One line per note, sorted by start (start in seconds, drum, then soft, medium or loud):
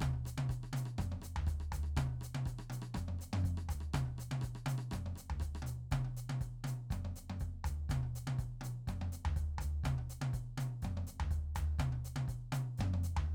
0.01 kick medium
0.01 cross-stick medium
0.01 hi-hat pedal medium
0.01 high tom loud
0.14 high tom soft
0.16 high tom soft
0.26 cross-stick soft
0.26 hi-hat pedal medium
0.38 high tom loud
0.50 kick medium
0.50 cross-stick soft
0.50 hi-hat pedal medium
0.64 cross-stick soft
0.73 hi-hat pedal medium
0.73 high tom loud
0.86 cross-stick soft
0.99 kick medium
0.99 cross-stick medium
0.99 hi-hat pedal medium
0.99 mid tom loud
1.12 mid tom medium
1.22 cross-stick soft
1.22 hi-hat pedal medium
1.37 floor tom loud
1.47 kick medium
1.47 cross-stick soft
1.47 hi-hat pedal medium
1.61 cross-stick soft
1.73 floor tom loud
1.73 hi-hat pedal medium
1.84 cross-stick soft
1.97 kick medium
1.97 cross-stick medium
1.97 hi-hat pedal medium
1.97 high tom loud
2.07 high tom soft
2.10 high tom soft
2.13 high tom soft
2.22 cross-stick soft
2.22 hi-hat pedal medium
2.35 high tom loud
2.46 kick medium
2.46 cross-stick soft
2.46 hi-hat pedal medium
2.59 cross-stick soft
2.70 hi-hat pedal medium
2.70 high tom loud
2.82 cross-stick medium
2.95 kick medium
2.95 cross-stick medium
2.95 hi-hat pedal medium
2.95 mid tom loud
3.09 mid tom medium
3.19 cross-stick soft
3.19 hi-hat pedal medium
3.34 cross-stick soft
3.34 mid tom loud
3.45 kick soft
3.45 hi-hat pedal medium
3.58 cross-stick soft
3.69 floor tom loud
3.69 hi-hat pedal medium
3.81 cross-stick soft
3.94 kick medium
3.94 cross-stick medium
3.94 hi-hat pedal medium
3.94 high tom loud
4.06 high tom soft
4.09 high tom soft
4.13 high tom soft
4.19 cross-stick soft
4.19 hi-hat pedal medium
4.32 high tom loud
4.42 kick soft
4.42 cross-stick medium
4.42 hi-hat pedal medium
4.56 cross-stick soft
4.67 hi-hat pedal medium
4.67 high tom loud
4.78 cross-stick soft
4.92 kick soft
4.92 cross-stick medium
4.92 hi-hat pedal medium
4.92 mid tom medium
5.06 mid tom medium
5.16 cross-stick soft
5.16 hi-hat pedal medium
5.30 floor tom loud
5.40 kick soft
5.40 cross-stick soft
5.40 hi-hat pedal medium
5.55 cross-stick soft
5.63 high tom loud
5.67 hi-hat pedal medium
5.92 kick medium
5.92 hi-hat pedal medium
5.92 high tom loud
6.05 high tom medium
6.09 high tom soft
6.17 hi-hat pedal medium
6.30 high tom loud
6.41 kick medium
6.41 hi-hat pedal medium
6.65 hi-hat pedal medium
6.65 high tom loud
6.91 kick medium
6.91 hi-hat pedal medium
6.91 mid tom medium
7.05 mid tom medium
7.16 hi-hat pedal medium
7.30 mid tom loud
7.40 kick medium
7.40 hi-hat pedal medium
7.65 floor tom loud
7.65 hi-hat pedal medium
7.90 kick medium
7.90 hi-hat pedal medium
7.90 high tom loud
8.04 high tom soft
8.07 high tom soft
8.16 hi-hat pedal medium
8.28 high tom loud
8.39 kick medium
8.39 hi-hat pedal medium
8.62 hi-hat pedal medium
8.62 high tom loud
8.88 kick medium
8.88 hi-hat pedal medium
8.88 mid tom medium
9.02 mid tom medium
9.13 hi-hat pedal medium
9.26 floor tom loud
9.37 kick medium
9.37 hi-hat pedal medium
9.59 floor tom loud
9.59 hi-hat pedal medium
9.84 kick medium
9.84 hi-hat pedal medium
9.84 high tom loud
9.99 high tom medium
10.10 hi-hat pedal medium
10.22 high tom loud
10.34 kick medium
10.34 hi-hat pedal medium
10.58 hi-hat pedal medium
10.58 high tom loud
10.82 kick medium
10.82 hi-hat pedal medium
10.82 mid tom loud
10.98 mid tom medium
11.07 hi-hat pedal medium
11.20 floor tom loud
11.31 kick medium
11.31 hi-hat pedal medium
11.56 floor tom loud
11.56 hi-hat pedal medium
11.79 kick medium
11.79 hi-hat pedal medium
11.79 high tom loud
11.93 high tom medium
11.96 high tom soft
12.05 hi-hat pedal medium
12.16 high tom loud
12.28 kick medium
12.28 hi-hat pedal medium
12.53 hi-hat pedal medium
12.53 high tom loud
12.78 kick medium
12.78 hi-hat pedal medium
12.78 mid tom loud
12.94 mid tom medium
13.04 hi-hat pedal medium
13.17 floor tom loud